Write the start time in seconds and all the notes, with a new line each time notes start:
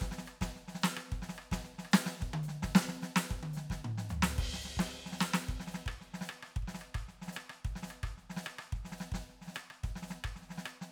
0.01 kick, snare
0.07 kick
0.11 snare
0.18 snare
0.26 cross-stick, hi-hat pedal
0.41 kick, snare
0.55 snare
0.62 snare
0.68 snare
0.75 snare
0.81 snare, hi-hat pedal
0.97 cross-stick
1.12 kick, snare
1.22 snare
1.29 snare
1.34 cross-stick, hi-hat pedal
1.51 kick, snare
1.57 kick
1.64 snare
1.73 snare
1.78 snare
1.85 cross-stick
1.91 snare, hi-hat pedal
2.06 snare
2.20 kick, snare
2.27 kick
2.33 high tom
2.43 hi-hat pedal
2.48 snare
2.62 kick, snare
2.75 snare
2.88 snare
3.01 snare, hi-hat pedal
3.16 snare
3.30 kick, snare
3.36 kick
3.43 high tom
3.53 snare, hi-hat pedal
3.70 kick, snare
3.84 mid tom
3.98 snare
4.09 floor tom, hi-hat pedal
4.22 snare
4.38 kick, ride
4.53 snare
4.61 snare, hi-hat pedal
4.77 kick, snare
4.93 snare
4.99 snare
5.06 snare
5.12 snare
5.18 snare, hi-hat pedal
5.34 snare
5.48 kick, snare
5.55 kick
5.60 snare
5.67 snare, hi-hat pedal
5.74 snare
5.86 kick, cross-stick
5.91 kick
6.01 snare
6.07 snare
6.12 snare
6.21 snare
6.25 cross-stick, hi-hat pedal
6.43 cross-stick
6.56 kick, snare
6.62 kick
6.67 snare
6.74 snare
6.79 cross-stick, hi-hat pedal
6.94 kick, cross-stick
7.00 kick
7.08 snare
7.18 snare
7.21 snare
7.28 snare
7.32 cross-stick, hi-hat pedal
7.50 cross-stick
7.65 kick, snare
7.72 kick, snare
7.83 snare
7.88 cross-stick, hi-hat pedal
8.03 kick, cross-stick
8.17 snare
8.23 snare
8.27 snare
8.30 snare
8.36 snare
8.43 cross-stick, hi-hat pedal
8.59 cross-stick
8.72 kick, snare
8.83 snare
8.85 snare
8.92 snare
8.97 snare, hi-hat pedal
9.12 kick, snare
9.29 snare
9.35 snare
9.38 snare
9.41 snare
9.47 snare
9.54 cross-stick, hi-hat pedal
9.70 cross-stick
9.83 kick, snare
9.90 kick
9.95 snare
10.02 snare
10.08 snare, hi-hat pedal
10.24 kick, cross-stick
10.36 snare
10.42 snare
10.49 snare
10.58 snare
10.65 cross-stick, hi-hat pedal
10.81 snare